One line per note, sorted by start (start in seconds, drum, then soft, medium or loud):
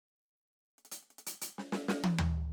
0.78 closed hi-hat soft
0.85 closed hi-hat medium
0.92 closed hi-hat loud
1.03 closed hi-hat soft
1.10 closed hi-hat soft
1.18 closed hi-hat medium
1.27 closed hi-hat loud
1.42 closed hi-hat loud
1.58 snare medium
1.72 snare loud
1.88 snare loud
2.04 high tom loud
2.19 floor tom loud